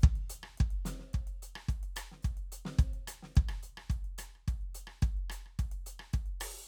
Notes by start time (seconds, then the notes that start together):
0.01 kick, closed hi-hat, hi-hat pedal
0.07 snare
0.16 closed hi-hat
0.30 closed hi-hat
0.44 cross-stick
0.58 kick, closed hi-hat
0.71 closed hi-hat
0.86 closed hi-hat, snare
1.00 snare
1.14 kick, closed hi-hat
1.28 closed hi-hat
1.43 closed hi-hat
1.56 cross-stick
1.69 kick, closed hi-hat
1.84 closed hi-hat
1.97 closed hi-hat, cross-stick
2.12 snare
2.23 kick, closed hi-hat, hi-hat pedal
2.33 snare
2.38 closed hi-hat
2.53 closed hi-hat
2.66 snare
2.79 kick, closed hi-hat
2.94 closed hi-hat
3.08 closed hi-hat, kick, cross-stick
3.23 snare
3.36 kick, closed hi-hat
3.50 cross-stick, closed hi-hat
3.64 closed hi-hat
3.78 cross-stick
3.91 kick, closed hi-hat
4.05 closed hi-hat
4.19 closed hi-hat, cross-stick
4.36 cross-stick
4.48 kick, closed hi-hat
4.62 closed hi-hat
4.75 closed hi-hat
4.88 cross-stick
5.03 kick, closed hi-hat
5.18 closed hi-hat
5.31 closed hi-hat, cross-stick
5.47 cross-stick
5.60 kick, closed hi-hat
5.72 closed hi-hat
5.87 closed hi-hat
6.00 cross-stick
6.14 kick, closed hi-hat
6.27 closed hi-hat
6.41 open hi-hat, cross-stick